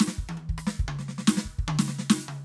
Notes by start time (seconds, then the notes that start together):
0.00 snare
0.07 snare
0.19 kick
0.29 high tom
0.38 high tom
0.49 kick
0.58 cross-stick
0.67 snare
0.80 kick
0.89 mid tom
0.99 snare
1.09 snare
1.19 snare
1.28 snare
1.38 snare
1.46 kick
1.59 kick
1.68 mid tom
1.79 snare
1.89 snare
1.99 snare
2.10 snare
2.21 closed hi-hat
2.29 mid tom